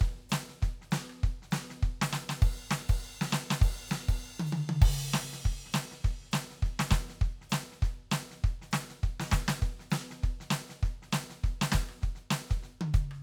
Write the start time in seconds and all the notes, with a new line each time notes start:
0.01 kick, snare
0.29 snare, hi-hat pedal
0.49 snare
0.62 kick, snare
0.82 snare
0.91 snare, hi-hat pedal
1.10 cross-stick
1.23 kick, snare
1.42 snare
1.51 hi-hat pedal
1.70 snare
1.83 kick, snare
2.02 snare
2.10 snare, hi-hat pedal
2.29 snare
2.42 kick, crash
2.70 snare, hi-hat pedal
2.89 kick, crash
3.21 snare
3.29 snare, hi-hat pedal
3.50 snare
3.62 kick, crash
3.88 snare, hi-hat pedal
4.09 kick, crash
4.40 high tom
4.47 hi-hat pedal
4.53 high tom
4.69 high tom
4.82 kick, crash
5.12 snare, hi-hat pedal
5.33 snare
5.45 kick, snare
5.65 snare
5.73 snare, hi-hat pedal
5.91 snare
6.04 kick, snare
6.23 snare
6.31 snare, hi-hat pedal
6.51 snare
6.62 kick, snare
6.79 snare
6.89 kick, snare, hi-hat pedal
7.09 snare
7.21 kick, snare
7.41 snare
7.50 snare, hi-hat pedal
7.72 snare
7.82 kick, snare
8.11 snare, hi-hat pedal
8.31 snare
8.44 kick, snare
8.62 snare
8.71 snare, hi-hat pedal
8.89 snare
9.03 kick, snare
9.20 snare
9.31 kick, snare, hi-hat pedal
9.48 snare
9.62 kick, snare
9.80 snare
9.90 snare, hi-hat pedal
10.11 snare
10.23 kick, snare
10.40 snare
10.51 snare, hi-hat pedal
10.70 snare
10.83 kick, snare
11.02 snare
11.12 snare, hi-hat pedal
11.30 snare
11.44 kick, snare
11.61 snare
11.71 kick, snare, hi-hat pedal
11.89 cross-stick
12.02 kick, snare
12.15 snare
12.30 snare, hi-hat pedal
12.50 kick, snare
12.63 snare
12.81 high tom
12.94 kick, snare, hi-hat pedal
13.11 cross-stick